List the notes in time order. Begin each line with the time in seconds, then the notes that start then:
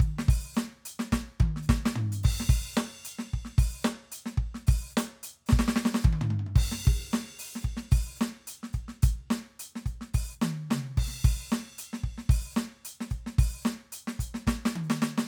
0.01 kick, closed hi-hat
0.19 snare
0.29 open hi-hat, kick
0.55 snare, hi-hat pedal
0.86 closed hi-hat
1.00 snare
1.13 kick, snare
1.41 kick, high tom
1.57 snare
1.64 hi-hat pedal
1.70 kick, snare
1.86 snare
1.96 floor tom
2.13 closed hi-hat
2.24 kick, crash
2.41 snare
2.50 open hi-hat, kick
2.74 snare, hi-hat pedal
3.06 closed hi-hat
3.20 snare
3.32 kick, closed hi-hat
3.46 snare
3.59 open hi-hat, kick
3.82 snare, hi-hat pedal
4.13 closed hi-hat
4.27 snare
4.38 kick, closed hi-hat
4.55 snare
4.68 open hi-hat, kick
4.91 hi-hat pedal
4.98 closed hi-hat, snare
5.24 closed hi-hat
5.47 snare, hi-hat pedal
5.53 kick
5.69 snare
5.77 snare
5.86 snare
5.95 snare
6.02 kick, hi-hat pedal, high tom
6.14 high tom
6.22 floor tom
6.31 floor tom
6.40 floor tom
6.47 floor tom
6.56 kick, crash
6.72 snare
6.86 kick, ride
7.12 snare, hi-hat pedal
7.40 open hi-hat
7.56 snare, hi-hat pedal
7.63 closed hi-hat, kick
7.78 snare
7.92 open hi-hat, kick
8.17 hi-hat pedal
8.22 snare
8.48 closed hi-hat
8.64 snare
8.74 closed hi-hat, kick
8.89 snare
9.03 closed hi-hat, kick
9.31 snare
9.60 closed hi-hat
9.76 snare
9.87 closed hi-hat, kick
10.02 snare
10.15 open hi-hat, kick
10.32 hi-hat pedal
10.42 snare, high tom
10.71 snare, mid tom
10.98 kick, crash
11.08 snare
11.15 snare
11.25 open hi-hat, kick
11.50 snare, hi-hat pedal
11.79 closed hi-hat
11.94 snare
12.04 kick, closed hi-hat
12.19 snare
12.30 open hi-hat, kick
12.53 snare, hi-hat pedal
12.86 closed hi-hat
13.01 snare
13.11 closed hi-hat, kick
13.27 snare
13.39 open hi-hat, kick
13.63 snare, hi-hat pedal
13.93 closed hi-hat
14.08 snare
14.20 closed hi-hat, kick
14.35 snare
14.48 kick, snare, hi-hat pedal
14.66 snare, hi-hat pedal
14.76 high tom
14.84 hi-hat pedal
14.91 snare
15.03 snare
15.19 snare